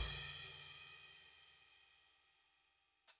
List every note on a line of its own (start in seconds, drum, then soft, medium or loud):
3.09 hi-hat pedal medium